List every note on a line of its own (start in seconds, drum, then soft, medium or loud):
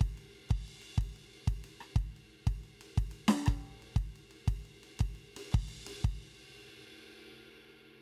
0.01 kick medium
0.01 ride loud
0.18 ride medium
0.49 kick medium
0.49 ride medium
0.68 ride medium
0.82 ride medium
0.98 kick medium
0.98 ride medium
1.16 ride soft
1.34 ride soft
1.48 kick medium
1.48 ride loud
1.64 ride medium
1.81 cross-stick medium
1.96 kick medium
1.96 ride medium
2.17 ride soft
2.31 ride soft
2.47 kick medium
2.47 ride medium
2.64 ride soft
2.81 ride medium
2.98 kick medium
2.98 ride loud
3.12 ride medium
3.28 snare loud
3.46 kick medium
3.46 cross-stick medium
3.46 ride loud
3.82 ride soft
3.96 kick medium
3.96 ride medium
4.16 ride medium
4.31 ride soft
4.48 kick medium
4.48 ride loud
4.66 ride soft
4.83 ride medium
4.99 kick medium
4.99 ride loud
5.15 ride soft
5.37 ride loud
5.52 kick medium
5.52 ride medium
5.69 ride medium
5.87 ride loud
6.05 kick medium
6.05 ride medium